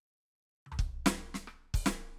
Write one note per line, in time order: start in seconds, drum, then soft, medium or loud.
0.66 high tom soft
0.72 floor tom medium
0.79 kick medium
1.06 snare loud
1.34 snare medium
1.47 cross-stick medium
1.74 open hi-hat medium
1.74 kick medium
1.86 snare loud
1.86 hi-hat pedal soft
2.00 snare soft